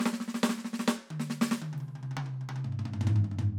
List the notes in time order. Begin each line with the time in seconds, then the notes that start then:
0.00 snare
0.05 snare
0.13 snare
0.20 snare
0.28 snare
0.34 snare
0.43 snare
0.49 snare
0.58 snare
0.64 snare
0.73 snare
0.79 snare
0.87 snare
1.10 high tom
1.19 snare
1.30 snare
1.41 snare
1.51 snare
1.62 high tom
1.73 mid tom
1.78 mid tom, ride
1.88 mid tom
1.95 mid tom
2.03 mid tom
2.11 mid tom
2.17 mid tom
2.26 mid tom
2.34 mid tom
2.41 mid tom
2.49 mid tom
2.56 mid tom
2.64 floor tom
2.72 floor tom
2.79 floor tom
2.85 floor tom
2.93 floor tom
3.01 floor tom
3.07 floor tom
3.16 floor tom
3.24 floor tom
3.31 floor tom
3.38 floor tom